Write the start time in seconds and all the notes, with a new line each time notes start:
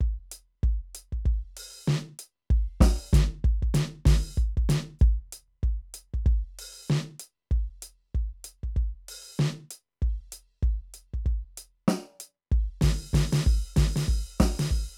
0.01 kick
0.32 closed hi-hat
0.64 kick
0.95 closed hi-hat
1.13 kick
1.26 kick
1.30 crash
1.57 open hi-hat
1.88 snare, hi-hat pedal
2.19 closed hi-hat
2.51 kick, crash
2.55 ride
2.81 open hi-hat, kick, snare
3.11 closed hi-hat, kick, snare, hi-hat pedal
3.45 kick
3.63 kick
3.75 closed hi-hat, snare
4.06 open hi-hat, kick, snare
4.37 kick, hi-hat pedal
4.57 kick
4.64 kick
4.69 closed hi-hat, snare, hi-hat pedal
4.99 kick, hi-hat pedal
5.33 closed hi-hat
5.63 kick
5.94 closed hi-hat
6.14 kick
6.26 kick, crash
6.59 open hi-hat
6.89 snare, hi-hat pedal
7.20 closed hi-hat
7.51 kick
7.57 crash
7.83 closed hi-hat
8.15 kick
8.45 closed hi-hat
8.64 kick
8.77 kick
9.09 open hi-hat
9.39 snare, hi-hat pedal
9.71 closed hi-hat
10.02 kick
10.07 crash
10.33 closed hi-hat
10.63 kick
10.94 closed hi-hat
11.14 kick
11.26 kick
11.58 open hi-hat
11.88 snare, hi-hat pedal
12.20 closed hi-hat
12.52 kick
12.57 crash
12.82 open hi-hat, kick, snare
13.14 open hi-hat, kick, snare
13.33 open hi-hat, snare
13.47 kick
13.77 open hi-hat, kick, snare
13.96 open hi-hat, snare
14.09 kick
14.40 open hi-hat, kick, snare
14.60 open hi-hat, snare
14.71 kick